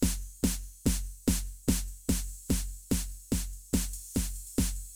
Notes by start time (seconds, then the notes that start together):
0.01 kick, snare, hi-hat pedal, crash
0.22 crash
0.43 kick, snare, hi-hat pedal, crash
0.65 crash
0.86 kick, snare, hi-hat pedal, crash
1.07 crash
1.27 kick, snare, hi-hat pedal, crash
1.48 crash
1.68 kick, snare, hi-hat pedal, crash
1.88 crash
2.08 kick, snare, hi-hat pedal, crash
2.29 crash
2.49 kick, snare, hi-hat pedal, crash
2.71 crash
2.90 kick, snare, hi-hat pedal, crash
3.12 crash
3.32 kick, snare, hi-hat pedal, crash
3.53 crash
3.73 kick, snare, hi-hat pedal, crash
3.83 kick
3.94 crash
4.15 kick, snare, hi-hat pedal, crash
4.25 kick
4.36 crash
4.47 crash
4.58 kick, snare, hi-hat pedal, crash
4.77 crash